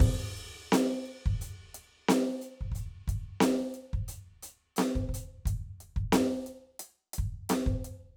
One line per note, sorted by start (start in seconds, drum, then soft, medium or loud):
0.01 kick loud
0.01 crash medium
0.37 closed hi-hat soft
0.73 closed hi-hat loud
0.73 snare loud
1.07 closed hi-hat soft
1.27 kick medium
1.27 snare soft
1.42 closed hi-hat medium
1.75 closed hi-hat medium
2.09 closed hi-hat loud
2.09 snare loud
2.42 closed hi-hat medium
2.62 kick medium
2.72 open hi-hat medium
2.72 kick medium
3.08 kick medium
3.08 closed hi-hat medium
3.41 closed hi-hat loud
3.41 snare loud
3.75 closed hi-hat medium
3.94 kick medium
4.09 closed hi-hat loud
4.43 closed hi-hat loud
4.77 closed hi-hat loud
4.77 snare loud
4.96 kick medium
5.10 kick medium
5.15 closed hi-hat loud
5.46 kick medium
5.46 closed hi-hat medium
5.81 closed hi-hat medium
5.97 kick medium
6.13 snare loud
6.13 closed hi-hat loud
6.47 closed hi-hat medium
6.80 closed hi-hat loud
7.14 closed hi-hat loud
7.19 kick medium
7.50 snare loud
7.50 closed hi-hat loud
7.67 kick medium
7.85 closed hi-hat medium